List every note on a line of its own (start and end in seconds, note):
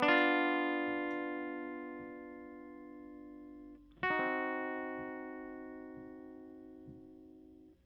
0.00 3.81 B3
0.00 3.79 D4
0.08 3.77 F4
4.03 7.70 F#4
4.10 7.76 D#4
4.19 7.71 C4